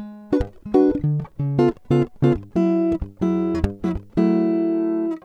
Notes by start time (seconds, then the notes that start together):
0.00 G#3
0.34 D4 F#4 B4
0.67 G#3
0.75 D4 F#4 B4
0.96 D4
1.05 D3
1.41 C#3
1.60 B3 F4 A4
1.92 C#3 B3 F4 A4
2.24 C#3 B3 F4 A4
2.34 G2
2.57 F#3 E4
3.04 G2
3.22 E2 F#3 E4 G#4
3.65 G2
3.75 G2
3.85 F3 E4 G#4
3.98 G2
4.18 F#3 A3 E4 G#4